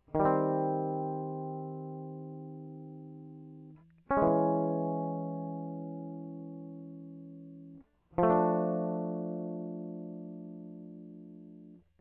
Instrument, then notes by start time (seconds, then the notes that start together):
electric guitar
0.16 D#3
0.21 G3
0.26 C4
4.11 C#4
4.18 G#3
4.23 E3
4.29 B3
8.19 F3
8.24 A3
8.31 D4